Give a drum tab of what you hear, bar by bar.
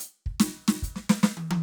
Hi-hat   |x--x--x-----|
Snare    |---o-o-ooo--|
High tom |----------oo|
Kick     |--o---o-----|